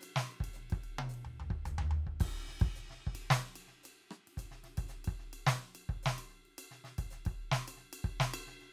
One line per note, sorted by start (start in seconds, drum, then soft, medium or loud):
0.01 hi-hat pedal medium
0.01 ride bell medium
0.16 snare medium
0.31 ride soft
0.40 kick medium
0.40 ride bell medium
0.53 hi-hat pedal medium
0.53 high tom soft
0.70 kick medium
0.70 ride bell soft
0.84 ride bell soft
0.99 high tom loud
1.09 hi-hat pedal medium
1.14 ride soft
1.25 floor tom medium
1.40 floor tom medium
1.50 kick medium
1.65 floor tom loud
1.65 hi-hat pedal medium
1.78 floor tom loud
1.91 floor tom medium
2.07 kick medium
2.20 kick loud
2.20 hi-hat pedal medium
2.20 ride medium
2.20 crash medium
2.48 snare soft
2.60 kick loud
2.60 ride bell soft
2.75 snare soft
2.75 hi-hat pedal medium
2.90 snare soft
3.07 kick medium
3.15 ride bell medium
3.30 snare loud
3.30 hi-hat pedal medium
3.56 ride bell medium
3.67 snare soft
3.83 hi-hat pedal medium
3.83 ride bell medium
4.11 cross-stick medium
4.27 ride soft
4.37 kick medium
4.37 hi-hat pedal medium
4.37 ride bell medium
4.51 snare soft
4.63 snare soft
4.63 ride soft
4.77 kick medium
4.77 ride bell medium
4.88 snare soft
4.88 hi-hat pedal medium
5.04 kick medium
5.04 ride bell medium
5.19 snare soft
5.33 ride bell medium
5.46 snare loud
5.46 hi-hat pedal medium
5.75 ride bell medium
5.89 kick medium
6.03 snare loud
6.03 hi-hat pedal medium
6.18 ride bell medium
6.30 snare soft
6.39 snare soft
6.45 ride soft
6.58 hi-hat pedal medium
6.58 ride bell medium
6.71 snare soft
6.84 snare soft
6.84 ride soft
6.98 kick medium
6.98 ride bell medium
7.10 snare soft
7.10 hi-hat pedal medium
7.25 kick medium
7.25 ride bell soft
7.40 ride soft
7.51 snare loud
7.67 hi-hat pedal medium
7.67 ride bell medium
7.77 snare soft
7.93 ride bell medium
8.04 kick medium
8.20 snare loud
8.20 hi-hat pedal medium
8.34 ride bell loud
8.47 snare soft
8.61 snare soft
8.61 ride soft